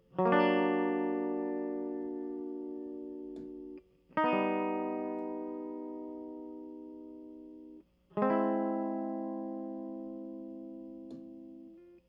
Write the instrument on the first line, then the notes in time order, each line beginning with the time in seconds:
electric guitar
0.20 F#3
0.26 A#3
0.33 D4
4.18 D#4
4.25 B3
4.34 G3
8.18 G#3
8.23 C4
8.31 E4